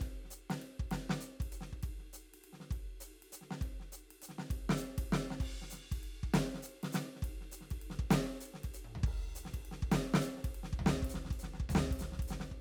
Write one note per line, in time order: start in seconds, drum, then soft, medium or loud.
0.01 kick medium
0.01 ride soft
0.25 snare soft
0.31 hi-hat pedal medium
0.31 ride soft
0.50 snare medium
0.50 ride soft
0.62 ride soft
0.80 kick medium
0.91 snare medium
0.91 ride medium
1.10 snare medium
1.21 hi-hat pedal medium
1.21 ride soft
1.40 kick medium
1.40 ride medium
1.52 hi-hat pedal medium
1.52 ride soft
1.61 snare soft
1.73 kick soft
1.83 kick medium
1.83 ride medium
1.99 snare soft
2.13 hi-hat pedal medium
2.13 ride soft
2.34 ride soft
2.53 snare soft
2.60 snare soft
2.71 kick medium
2.71 ride soft
3.01 hi-hat pedal medium
3.01 ride medium
3.23 ride soft
3.33 hi-hat pedal medium
3.33 ride soft
3.41 snare soft
3.51 snare soft
3.61 kick medium
3.61 ride soft
3.80 snare soft
3.92 hi-hat pedal medium
3.92 ride soft
4.11 ride soft
4.22 hi-hat pedal medium
4.22 ride soft
4.29 snare soft
4.39 snare soft
4.50 kick medium
4.50 ride medium
4.70 snare medium
4.77 hi-hat pedal medium
4.82 ride soft
4.98 kick medium
4.98 ride medium
5.13 snare medium
5.31 snare soft
5.40 kick medium
5.40 crash medium
5.62 snare soft
5.70 snare soft
5.70 hi-hat pedal medium
5.92 kick medium
5.92 ride medium
6.03 ride soft
6.23 kick medium
6.34 snare loud
6.34 ride medium
6.55 snare soft
6.63 hi-hat pedal medium
6.63 ride soft
6.83 snare medium
6.83 ride soft
6.93 snare medium
6.93 hi-hat pedal medium
6.93 ride medium
7.16 snare soft
7.23 kick medium
7.23 ride medium
7.41 snare soft
7.52 hi-hat pedal medium
7.52 ride medium
7.61 snare soft
7.71 kick soft
7.71 ride soft
7.82 ride soft
7.90 snare soft
7.99 kick medium
8.11 snare loud
8.11 ride medium
8.41 hi-hat pedal medium
8.46 ride soft
8.54 snare soft
8.64 kick soft
8.64 ride soft
8.74 hi-hat pedal medium
8.74 ride soft
8.85 high tom soft
8.95 floor tom medium
9.04 kick medium
9.04 crash soft
9.35 hi-hat pedal medium
9.35 ride medium
9.45 snare soft
9.54 kick soft
9.54 ride soft
9.65 ride soft
9.72 snare soft
9.83 kick medium
9.92 snare loud
9.92 ride medium
10.14 snare loud
10.21 hi-hat pedal medium
10.26 ride soft
10.37 snare soft
10.44 kick medium
10.44 ride medium
10.55 ride soft
10.64 snare soft
10.73 kick medium
10.79 floor tom medium
10.86 snare loud
11.03 kick medium
11.03 ride medium
11.10 hi-hat pedal medium
11.14 snare soft
11.25 snare soft
11.31 kick medium
11.31 ride bell soft
11.39 snare soft
11.39 hi-hat pedal medium
11.54 snare soft
11.60 kick medium
11.69 floor tom medium
11.69 hi-hat pedal medium
11.75 snare loud
11.91 kick soft
11.91 ride medium
11.99 snare soft
11.99 hi-hat pedal medium
12.12 snare soft
12.19 kick medium
12.19 ride medium
12.28 snare soft
12.28 hi-hat pedal medium
12.40 snare soft
12.52 kick soft